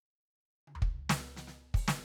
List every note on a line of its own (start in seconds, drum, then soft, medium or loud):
0.67 high tom soft
0.75 floor tom medium
0.82 kick medium
1.09 snare loud
1.36 snare medium
1.47 snare soft
1.74 open hi-hat medium
1.74 kick medium
1.88 snare loud
1.88 hi-hat pedal soft